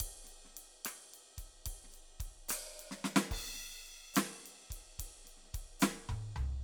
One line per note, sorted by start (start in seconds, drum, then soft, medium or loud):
0.01 kick soft
0.01 ride loud
0.25 snare soft
0.25 ride soft
0.45 snare soft
0.49 snare soft
0.53 snare soft
0.58 ride medium
0.86 cross-stick medium
0.86 hi-hat pedal medium
0.86 ride loud
1.15 ride soft
1.39 kick soft
1.39 ride medium
1.67 kick soft
1.67 ride medium
1.85 snare soft
1.90 snare soft
1.90 hi-hat pedal soft
1.94 snare soft
1.94 ride soft
2.21 kick soft
2.21 ride medium
2.28 kick soft
2.49 cross-stick medium
2.49 hi-hat pedal loud
2.49 ride medium
2.80 ride medium
2.92 snare medium
3.05 snare medium
3.17 snare loud
3.32 kick soft
3.32 crash medium
3.38 kick soft
3.48 snare soft
3.55 snare soft
3.59 snare soft
3.87 ride soft
4.15 snare loud
4.15 hi-hat pedal medium
4.15 ride loud
4.43 snare soft
4.43 ride medium
4.70 kick soft
4.70 snare soft
4.70 ride medium
5.00 kick soft
5.00 ride medium
5.25 snare soft
5.25 ride soft
5.38 snare soft
5.43 snare soft
5.45 snare soft
5.55 kick soft
5.55 ride medium
5.81 snare loud
5.81 hi-hat pedal medium
5.81 ride medium
6.10 kick soft
6.10 mid tom loud
6.37 kick soft
6.37 floor tom loud